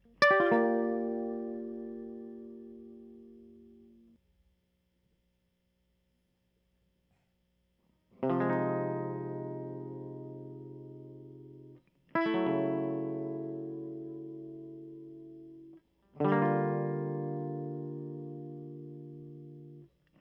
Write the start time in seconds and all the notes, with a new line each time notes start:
0.06 A#3
0.22 D5
0.31 G4
0.48 F4
0.52 A#3
8.24 C3
8.31 F3
8.41 G#3
8.50 D#4
12.16 E4
12.26 A3
12.35 F#3
12.48 C#3
16.21 D3
16.25 G3
16.32 A#3
16.43 F4